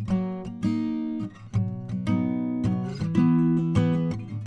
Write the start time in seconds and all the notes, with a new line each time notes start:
0.10 F#3 A#3
0.47 F#3 A#3
0.65 F#3 A#3 D#4
1.25 F3
1.55 B2 F#3
1.91 B2 F#3
2.08 F#3 B3 D#4
2.65 B2 F#3 B3
3.16 B3 E4
3.21 E3
3.40 E4
3.51 B3
3.59 E4
3.77 E3 B3 E4 G#4
3.95 B3 E4 G#4
4.30 D3